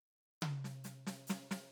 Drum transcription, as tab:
Hi-hat   |--p-p-p-|
Snare    |---ooooo|
High tom |--o-----|